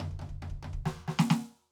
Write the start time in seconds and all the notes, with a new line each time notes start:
0.01 floor tom, high tom
0.12 kick
0.20 floor tom, high tom
0.30 kick
0.43 floor tom, high tom
0.51 kick
0.63 floor tom, high tom
0.74 kick
0.86 snare
1.09 snare
1.20 snare
1.31 snare